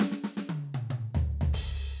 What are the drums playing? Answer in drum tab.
CC |------------x---|
SD |oooo------------|
T1 |----o-----------|
T2 |------oo--------|
FT |---------o-o----|
BD |------------o---|